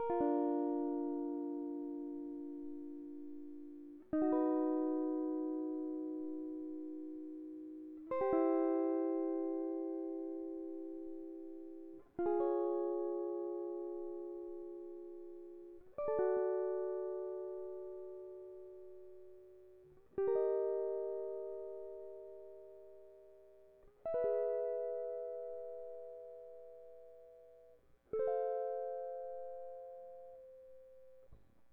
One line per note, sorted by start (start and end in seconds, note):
0.00 3.21 A#4
0.09 4.07 F4
0.22 4.07 D4
4.15 8.13 D#4
4.23 8.05 F#4
4.33 7.45 B4
8.15 11.96 C5
8.23 12.09 G4
8.34 11.94 E4
12.19 15.85 F4
12.26 15.66 G#4
12.41 14.58 C#5
15.99 18.94 D5
16.10 18.71 A4
16.20 18.94 F#4
20.18 23.16 G4
20.28 23.00 A#4
20.36 23.82 D#5
24.06 27.62 E5
24.15 26.47 B4
24.25 26.05 G#4
28.14 29.79 A4
28.20 31.33 C5
28.29 29.92 F5